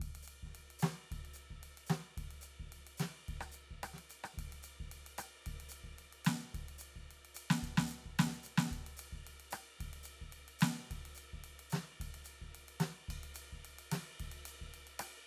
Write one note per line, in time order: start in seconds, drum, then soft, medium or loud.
0.01 kick soft
0.01 ride medium
0.07 kick soft
0.12 kick soft
0.12 ride medium
0.23 hi-hat pedal soft
0.28 ride medium
0.44 kick soft
0.44 snare soft
0.51 snare soft
0.55 snare soft
0.55 ride medium
0.59 snare soft
0.71 ride soft
0.80 snare medium
0.80 hi-hat pedal medium
0.80 ride medium
1.11 kick soft
1.11 snare soft
1.11 ride soft
1.26 ride soft
1.34 hi-hat pedal soft
1.34 ride soft
1.51 kick soft
1.51 snare soft
1.57 snare soft
1.61 snare soft
1.63 snare soft
1.63 ride medium
1.65 snare soft
1.67 snare soft
1.78 ride soft
1.87 snare medium
1.87 hi-hat pedal medium
1.87 ride medium
2.18 kick soft
2.18 ride medium
2.25 kick soft
2.31 ride soft
2.42 hi-hat pedal medium
2.42 ride soft
2.60 kick soft
2.73 kick soft
2.73 ride medium
2.79 snare soft
2.87 ride soft
2.98 snare medium
2.98 hi-hat pedal medium
2.98 ride medium
3.29 kick soft
3.29 ride soft
3.37 kick soft
3.41 cross-stick medium
3.52 hi-hat pedal medium
3.52 ride soft
3.71 kick soft
3.84 cross-stick medium
3.84 ride medium
3.94 snare soft
3.99 ride soft
4.10 hi-hat pedal soft
4.10 ride medium
4.24 cross-stick medium
4.34 snare soft
4.38 kick soft
4.38 ride medium
4.49 snare soft
4.49 ride soft
4.56 snare soft
4.63 hi-hat pedal medium
4.63 ride medium
4.81 kick soft
4.92 ride medium
5.07 ride medium
5.19 cross-stick medium
5.19 hi-hat pedal medium
5.19 ride medium
5.47 kick soft
5.47 ride medium
5.55 kick soft
5.61 ride soft
5.69 hi-hat pedal medium
5.69 ride medium
5.84 kick soft
5.92 snare soft
5.96 snare soft
5.99 snare soft
5.99 ride soft
6.13 ride soft
6.25 snare medium
6.25 hi-hat pedal medium
6.25 ride medium
6.55 kick soft
6.55 snare soft
6.55 ride soft
6.69 ride soft
6.79 hi-hat pedal medium
6.79 ride medium
6.93 kick soft
6.93 snare soft
6.98 snare soft
7.01 snare soft
7.11 ride soft
7.25 ride soft
7.35 hi-hat pedal medium
7.35 ride medium
7.51 snare medium
7.63 kick soft
7.63 ride soft
7.78 snare medium
7.88 hi-hat pedal medium
7.92 ride soft
8.06 kick soft
8.19 snare loud
8.19 ride medium
8.27 snare soft
8.35 ride soft
8.44 hi-hat pedal medium
8.44 ride soft
8.58 snare medium
8.66 snare soft
8.72 kick soft
8.72 ride soft
8.84 cross-stick soft
8.84 ride soft
8.93 cross-stick soft
8.97 hi-hat pedal medium
8.97 ride medium
9.13 kick soft
9.27 snare soft
9.27 ride medium
9.40 ride soft
9.51 cross-stick medium
9.51 hi-hat pedal medium
9.51 ride medium
9.79 kick soft
9.79 snare soft
9.79 ride medium
9.85 snare soft
9.89 snare soft
9.94 ride soft
10.04 hi-hat pedal medium
10.04 ride medium
10.22 kick soft
10.33 ride medium
10.49 ride soft
10.60 snare loud
10.60 hi-hat pedal medium
10.60 ride medium
10.91 kick soft
10.91 snare soft
10.91 ride medium
11.06 ride soft
11.15 hi-hat pedal soft
11.15 ride medium
11.34 kick soft
11.44 ride medium
11.60 ride soft
11.70 snare medium
11.70 hi-hat pedal medium
11.70 ride medium
11.97 kick soft
11.97 snare soft
12.02 ride medium
12.08 kick soft
12.15 ride soft
12.25 hi-hat pedal soft
12.25 ride medium
12.42 kick soft
12.55 ride medium
12.69 ride soft
12.80 snare medium
12.80 hi-hat pedal soft
12.80 ride medium
13.09 kick soft
13.09 ride bell medium
13.15 kick soft
13.24 ride soft
13.35 hi-hat pedal medium
13.35 ride medium
13.53 kick soft
13.65 ride medium
13.79 ride medium
13.92 snare medium
13.92 hi-hat pedal soft
13.92 ride medium
14.20 kick soft
14.20 ride medium
14.32 ride medium
14.46 hi-hat pedal medium
14.46 ride medium
14.62 kick soft
14.67 snare soft
14.72 snare soft
14.72 ride medium
14.88 ride soft
15.00 cross-stick medium
15.00 hi-hat pedal soft
15.00 ride loud